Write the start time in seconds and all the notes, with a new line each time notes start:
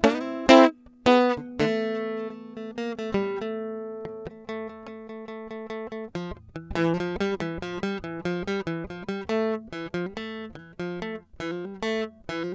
0.05 A#3 D4
0.17 C4 E4
0.51 C4 E4 A4
1.08 B3 G#4
1.62 A3
2.30 A3
2.59 A3
2.79 A#3
3.00 A3
3.14 G3
3.43 A3
4.29 A3
4.50 A3
4.70 A3
4.88 A3
5.11 A3
5.30 A3
5.53 A3
5.72 A3
5.94 A3
6.17 F3
6.57 E3
6.77 E3
6.96 F3
7.22 G3
7.42 E3
7.64 F3
7.85 G3
8.06 E3
8.27 F3
8.49 G3
8.69 E3
8.92 F3
9.10 G3
9.31 A3
9.74 E3
9.96 F3
10.08 G3
10.19 A3
10.57 E3
10.81 F3
11.04 A3
11.42 E3
11.54 F3
11.67 G3
11.84 A3
12.31 E3
12.45 F3